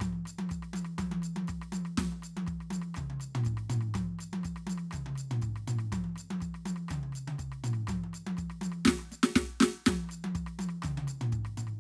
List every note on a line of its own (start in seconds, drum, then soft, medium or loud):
0.01 kick medium
0.01 cross-stick medium
0.01 high tom loud
0.01 percussion medium
0.13 high tom soft
0.16 high tom soft
0.26 cross-stick soft
0.26 percussion loud
0.39 high tom loud
0.50 kick medium
0.50 cross-stick soft
0.50 percussion medium
0.63 cross-stick medium
0.74 high tom loud
0.74 percussion medium
0.85 cross-stick medium
0.99 kick medium
0.99 cross-stick medium
0.99 high tom loud
0.99 percussion medium
1.12 high tom loud
1.23 cross-stick soft
1.23 percussion medium
1.37 high tom loud
1.48 kick medium
1.48 cross-stick medium
1.48 percussion medium
1.62 cross-stick medium
1.73 high tom loud
1.73 percussion loud
1.86 cross-stick medium
1.98 kick medium
1.98 snare medium
1.98 high tom loud
1.98 percussion medium
2.13 high tom medium
2.23 cross-stick soft
2.23 percussion medium
2.37 high tom loud
2.47 kick medium
2.47 cross-stick soft
2.47 percussion soft
2.61 cross-stick soft
2.71 high tom loud
2.71 percussion medium
2.82 cross-stick medium
2.95 kick medium
2.95 cross-stick medium
2.95 mid tom loud
2.95 percussion medium
3.11 mid tom medium
3.21 cross-stick soft
3.21 percussion medium
3.36 floor tom loud
3.44 kick medium
3.44 cross-stick soft
3.44 percussion medium
3.58 cross-stick medium
3.70 floor tom loud
3.70 percussion medium
3.81 cross-stick soft
3.95 kick medium
3.95 cross-stick medium
3.95 high tom loud
3.95 percussion medium
4.19 cross-stick soft
4.19 percussion loud
4.34 high tom loud
4.44 kick medium
4.44 cross-stick soft
4.44 percussion medium
4.57 cross-stick medium
4.68 high tom loud
4.68 percussion medium
4.78 cross-stick medium
4.92 kick medium
4.92 cross-stick medium
4.92 mid tom loud
4.92 percussion medium
5.07 mid tom loud
5.16 cross-stick soft
5.16 percussion medium
5.32 floor tom loud
5.42 kick medium
5.42 cross-stick soft
5.42 percussion medium
5.57 cross-stick soft
5.68 floor tom loud
5.68 percussion medium
5.79 cross-stick medium
5.93 kick medium
5.93 cross-stick medium
5.93 high tom loud
5.93 percussion medium
6.05 high tom medium
6.07 high tom soft
6.10 high tom soft
6.16 cross-stick soft
6.16 percussion medium
6.31 high tom loud
6.41 kick medium
6.41 cross-stick soft
6.41 percussion medium
6.55 cross-stick soft
6.66 high tom loud
6.66 percussion medium
6.77 cross-stick soft
6.89 kick medium
6.89 cross-stick medium
6.89 mid tom loud
6.89 percussion medium
7.04 mid tom medium
7.13 cross-stick soft
7.13 percussion medium
7.28 mid tom loud
7.39 kick medium
7.39 cross-stick soft
7.39 percussion medium
7.53 cross-stick medium
7.65 floor tom loud
7.65 percussion medium
7.74 cross-stick soft
7.88 kick medium
7.88 cross-stick medium
7.88 high tom loud
7.88 percussion medium
8.04 high tom medium
8.14 cross-stick soft
8.14 percussion medium
8.27 high tom loud
8.38 kick medium
8.38 cross-stick soft
8.38 percussion medium
8.51 cross-stick medium
8.62 high tom loud
8.62 percussion medium
8.73 cross-stick medium
8.86 kick medium
8.86 snare loud
8.86 percussion medium
8.88 snare loud
9.00 cross-stick soft
9.02 cross-stick soft
9.10 kick soft
9.10 snare soft
9.10 percussion medium
9.24 snare loud
9.36 kick medium
9.36 snare loud
9.36 percussion medium
9.61 snare loud
9.61 percussion medium
9.63 snare loud
9.86 kick medium
9.86 snare loud
9.86 high tom loud
9.86 percussion medium
10.05 high tom soft
10.10 cross-stick soft
10.10 percussion medium
10.25 high tom loud
10.36 kick medium
10.36 cross-stick soft
10.36 percussion medium
10.47 cross-stick medium
10.60 high tom loud
10.60 percussion medium
10.69 cross-stick medium
10.83 kick medium
10.83 cross-stick medium
10.83 mid tom loud
10.83 percussion medium
10.98 mid tom loud
11.08 cross-stick soft
11.08 percussion loud
11.22 floor tom loud
11.33 kick medium
11.33 percussion soft
11.46 cross-stick medium
11.58 floor tom loud
11.58 percussion medium
11.68 cross-stick soft